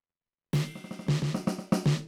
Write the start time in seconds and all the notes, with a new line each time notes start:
0.53 snare, ride
0.75 snare
0.84 snare
0.91 snare
0.99 snare
1.06 snare
1.08 snare
1.22 snare
1.34 snare
1.47 snare
1.58 snare
1.72 snare
1.86 snare